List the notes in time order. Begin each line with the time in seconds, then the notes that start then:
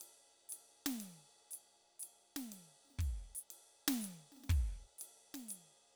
0.01 ride
0.49 hi-hat pedal, ride
0.86 snare, ride
0.99 hi-hat pedal, ride
1.51 hi-hat pedal, ride
1.99 hi-hat pedal, ride
2.36 snare, ride
2.52 ride
2.85 snare
2.88 snare
2.90 snare
2.99 kick, ride
3.35 hi-hat pedal
3.50 ride
3.88 snare, ride
4.01 hi-hat pedal, ride
4.32 snare
4.36 snare
4.40 snare
4.44 snare
4.49 kick, ride
4.98 hi-hat pedal, ride
5.34 snare, ride
5.48 hi-hat pedal, ride